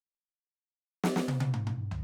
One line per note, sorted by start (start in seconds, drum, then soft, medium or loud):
1.04 snare loud
1.09 hi-hat pedal soft
1.16 snare loud
1.28 high tom loud
1.40 high tom loud
1.54 mid tom loud
1.67 mid tom loud
1.91 floor tom medium